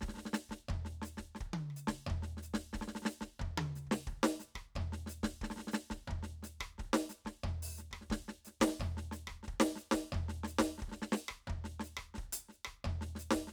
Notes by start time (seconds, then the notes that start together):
0.01 kick, snare
0.09 snare
0.14 snare
0.17 snare
0.26 snare
0.33 snare, hi-hat pedal
0.49 kick, snare
0.69 kick, floor tom
0.85 snare
1.02 snare, hi-hat pedal
1.17 kick, snare
1.35 snare
1.41 kick
1.54 high tom
1.70 cross-stick
1.76 hi-hat pedal
1.87 kick, snare
2.07 kick, floor tom
2.23 snare
2.37 snare
2.43 hi-hat pedal
2.54 kick, snare
2.73 kick, snare
2.81 snare
2.88 snare
2.95 snare
3.02 snare
3.05 snare
3.10 hi-hat pedal
3.21 kick, snare
3.40 kick, floor tom
3.58 high tom
3.76 snare, hi-hat pedal
3.87 kick
3.91 snare
4.07 kick, snare
4.23 snare
4.40 snare, hi-hat pedal
4.55 kick, cross-stick
4.76 kick, floor tom
4.93 snare
5.06 snare, hi-hat pedal
5.23 kick, snare
5.41 kick, snare
5.50 snare
5.56 snare
5.59 snare
5.67 snare
5.72 snare, hi-hat pedal
5.90 kick, snare
6.08 kick, floor tom
6.23 snare
6.43 snare, hi-hat pedal
6.60 kick, cross-stick
6.78 kick, snare
6.93 snare
7.10 snare, hi-hat pedal
7.25 kick, snare
7.44 kick, floor tom
7.62 open hi-hat
7.77 snare, hi-hat pedal
7.91 kick, cross-stick
8.01 snare
8.10 kick, snare
8.28 snare
8.45 snare, hi-hat pedal
8.61 kick, snare
8.68 snare
8.80 kick, floor tom
8.97 snare
9.12 snare, hi-hat pedal
9.27 kick, cross-stick
9.43 snare
9.48 kick
9.60 snare
9.76 snare, hi-hat pedal
9.92 kick, snare
10.12 kick, floor tom
10.29 snare
10.44 snare
10.48 hi-hat pedal
10.59 kick, snare
10.78 kick, snare
10.88 snare
10.92 snare
11.02 snare
11.12 snare
11.17 hi-hat pedal
11.29 kick, cross-stick
11.47 kick, floor tom
11.64 snare
11.80 snare
11.84 hi-hat pedal
11.97 kick, cross-stick
12.14 kick, snare
12.33 closed hi-hat
12.49 snare, hi-hat pedal
12.65 kick, cross-stick
12.85 kick, floor tom
13.01 snare
13.15 snare, hi-hat pedal
13.31 kick, snare
13.47 snare